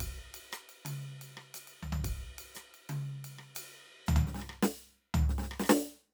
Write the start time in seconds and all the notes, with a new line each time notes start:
0.01 kick, ride
0.18 ride
0.35 ride
0.51 cross-stick, hi-hat pedal, ride
0.70 ride
0.86 mid tom, ride
1.22 ride
1.38 cross-stick
1.55 hi-hat pedal, ride
1.68 ride
1.83 kick, floor tom
1.93 floor tom
2.05 kick, ride
2.39 ride
2.55 cross-stick, hi-hat pedal
2.75 ride
2.90 mid tom, ride
3.25 ride
3.39 cross-stick
3.56 hi-hat pedal, ride
3.74 ride
3.85 ride
4.07 floor tom, hi-hat pedal
4.17 floor tom
4.28 snare
4.35 snare
4.38 snare
4.40 cross-stick, snare
4.50 cross-stick
4.54 cross-stick
4.63 snare, hi-hat pedal
5.15 floor tom
5.30 snare
5.39 snare
5.42 snare
5.45 snare
5.52 cross-stick
5.54 cross-stick
5.60 snare
5.64 cross-stick, hi-hat pedal
5.66 cross-stick, snare